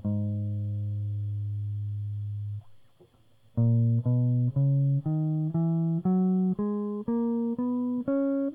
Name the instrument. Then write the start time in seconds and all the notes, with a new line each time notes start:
electric guitar
0.06 G#2
3.59 A#2
4.08 B2
4.58 C#3
5.07 D#3
5.55 E3
6.06 F#3
6.59 G#3
7.08 A#3
7.59 B3
8.08 C#4